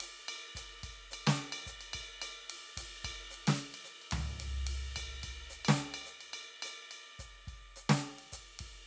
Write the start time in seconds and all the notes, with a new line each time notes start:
0.01 hi-hat pedal, ride
0.29 ride bell
0.56 kick, hi-hat pedal, ride bell
0.84 kick, ride bell
0.93 kick
1.12 hi-hat pedal, ride bell
1.27 snare, ride bell
1.53 ride bell
1.67 kick, hi-hat pedal
1.81 ride bell
1.94 kick, ride bell
2.01 kick
2.22 hi-hat pedal, ride bell
2.50 ride
2.78 kick, hi-hat pedal, ride
2.83 kick
3.05 kick, ride bell
3.14 kick
3.31 hi-hat pedal, ride
3.48 snare, ride
3.75 ride bell
3.85 hi-hat pedal
4.02 ride bell
4.12 floor tom, ride
4.40 hi-hat pedal, ride
4.67 ride
4.97 kick, hi-hat pedal, ride bell
5.03 kick
5.24 kick, ride bell
5.33 kick
5.50 hi-hat pedal, ride bell
5.66 snare, ride bell
5.95 ride bell
6.07 hi-hat pedal
6.21 ride bell
6.34 ride bell
6.63 hi-hat pedal, ride bell
6.92 ride bell
7.20 kick, hi-hat pedal, ride bell
7.48 kick, ride bell
7.58 kick
7.77 hi-hat pedal, ride
7.90 snare, ride
8.19 ride
8.33 kick, hi-hat pedal, ride
8.60 kick, ride
8.67 kick